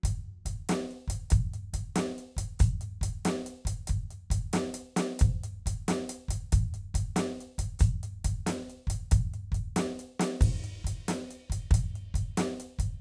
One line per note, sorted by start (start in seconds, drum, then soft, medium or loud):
0.03 kick medium
0.03 closed hi-hat loud
0.46 kick medium
0.46 closed hi-hat loud
0.69 snare loud
0.69 closed hi-hat loud
0.91 closed hi-hat soft
1.08 kick medium
1.08 closed hi-hat loud
1.30 kick loud
1.30 closed hi-hat loud
1.54 closed hi-hat medium
1.74 kick medium
1.74 closed hi-hat loud
1.96 snare loud
1.96 closed hi-hat loud
2.18 closed hi-hat medium
2.37 kick medium
2.37 closed hi-hat loud
2.59 closed hi-hat loud
2.59 kick loud
2.81 closed hi-hat medium
3.01 kick medium
3.01 closed hi-hat loud
3.25 snare loud
3.25 closed hi-hat loud
3.46 closed hi-hat medium
3.65 kick medium
3.65 closed hi-hat loud
3.87 kick medium
3.87 closed hi-hat loud
4.11 closed hi-hat medium
4.30 kick medium
4.30 closed hi-hat loud
4.53 snare loud
4.53 closed hi-hat loud
4.74 closed hi-hat loud
4.96 snare loud
4.96 closed hi-hat loud
5.19 kick loud
5.19 closed hi-hat loud
5.44 closed hi-hat medium
5.66 kick medium
5.66 closed hi-hat loud
5.88 snare loud
5.88 closed hi-hat loud
6.09 closed hi-hat loud
6.28 kick medium
6.28 closed hi-hat loud
6.52 kick loud
6.52 closed hi-hat loud
6.74 closed hi-hat medium
6.94 kick medium
6.94 closed hi-hat loud
7.16 snare loud
7.16 closed hi-hat loud
7.41 closed hi-hat medium
7.58 kick medium
7.58 closed hi-hat loud
7.79 closed hi-hat loud
7.79 kick loud
8.03 closed hi-hat medium
8.24 kick medium
8.24 closed hi-hat loud
8.46 snare loud
8.46 closed hi-hat loud
8.70 closed hi-hat medium
8.87 kick medium
8.87 closed hi-hat loud
9.11 kick loud
9.11 closed hi-hat loud
9.34 closed hi-hat soft
9.52 kick medium
9.52 closed hi-hat medium
9.76 snare loud
9.76 closed hi-hat loud
9.99 closed hi-hat medium
10.20 snare loud
10.20 closed hi-hat loud
10.41 kick loud
10.41 crash loud
10.64 closed hi-hat medium
10.84 kick medium
10.84 closed hi-hat loud
11.08 snare loud
11.08 closed hi-hat loud
11.31 closed hi-hat medium
11.50 kick medium
11.50 closed hi-hat loud
11.71 kick loud
11.71 closed hi-hat loud
11.96 closed hi-hat soft
12.14 kick medium
12.14 closed hi-hat medium
12.37 snare loud
12.37 closed hi-hat loud
12.60 closed hi-hat medium
12.79 kick medium
12.79 closed hi-hat medium